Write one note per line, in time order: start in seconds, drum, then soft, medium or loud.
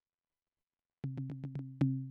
1.04 floor tom medium
1.04 high tom medium
1.18 floor tom medium
1.18 high tom medium
1.30 floor tom medium
1.30 high tom medium
1.44 floor tom medium
1.44 high tom medium
1.55 floor tom medium
1.55 high tom medium
1.81 floor tom loud
1.81 high tom loud